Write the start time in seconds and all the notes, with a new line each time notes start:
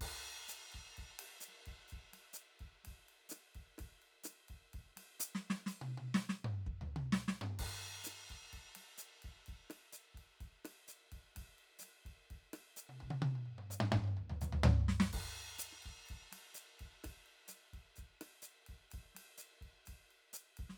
0.01 kick, crash
0.07 kick
0.49 hi-hat pedal, ride
0.72 kick, ride
0.97 kick, ride
1.19 ride
1.41 hi-hat pedal, ride
1.48 snare
1.66 kick, ride
1.88 hi-hat pedal, ride
1.93 kick
2.13 snare, ride
2.34 hi-hat pedal, ride
2.60 kick, ride
2.84 kick, snare, ride
3.09 ride
3.30 cross-stick, snare, hi-hat pedal, ride
3.55 kick, ride
3.78 kick, cross-stick, snare, ride
3.86 kick
4.02 ride
4.24 cross-stick, snare, hi-hat pedal, ride
4.49 kick, ride
4.74 kick, ride
4.80 kick
4.97 snare, ride
5.20 hi-hat pedal, ride
5.35 snare
5.50 snare
5.67 snare, hi-hat pedal
5.82 high tom
5.98 high tom
6.15 snare
6.30 snare
6.45 mid tom
6.67 kick
6.73 kick
6.82 floor tom
6.96 high tom
7.13 snare
7.28 snare
7.42 mid tom
7.59 kick, crash
8.04 cross-stick, hi-hat pedal, ride
8.30 kick, ride
8.53 kick, ride
8.58 snare
8.76 snare, ride
8.98 hi-hat pedal, ride
9.23 kick, ride
9.46 kick, hi-hat pedal, ride
9.54 kick
9.70 cross-stick, snare, ride
9.93 hi-hat pedal, ride
10.15 kick, ride
10.41 kick, hi-hat pedal, ride
10.46 kick
10.65 cross-stick, snare, ride
10.88 hi-hat pedal, ride
11.12 kick, ride
11.36 kick, snare, ride
11.42 kick
11.59 ride
11.79 snare, hi-hat pedal
11.84 ride
12.06 kick, ride
12.31 kick, ride
12.53 cross-stick, snare, ride
12.77 hi-hat pedal, ride
12.89 high tom
13.01 kick, high tom
13.11 high tom
13.22 high tom
13.36 high tom
13.46 mid tom
13.59 mid tom
13.71 hi-hat pedal, mid tom
13.81 mid tom
13.92 kick, mid tom
14.01 kick, mid tom
14.08 mid tom
14.17 floor tom
14.30 floor tom
14.41 floor tom, hi-hat pedal
14.53 floor tom
14.64 floor tom
14.89 snare
15.00 snare
15.13 kick, crash
15.21 kick
15.59 hi-hat pedal, ride
15.73 cross-stick
15.83 kick, ride
16.06 hi-hat pedal, ride
16.10 kick
16.16 kick
16.32 snare, ride
16.55 hi-hat pedal, ride
16.80 kick, ride
17.04 kick, cross-stick, snare, ride
17.11 kick
17.26 ride
17.48 snare, hi-hat pedal, ride
17.74 kick, ride
17.96 kick, hi-hat pedal, ride
18.21 cross-stick, snare, ride
18.42 hi-hat pedal, ride
18.67 kick, ride
18.91 kick, hi-hat pedal, ride
18.99 kick
19.15 snare, ride
19.38 hi-hat pedal, ride
19.61 kick, ride
19.86 kick, snare, hi-hat pedal, ride
20.11 ride
20.33 hi-hat pedal, ride
20.57 kick, ride
20.64 kick
20.70 snare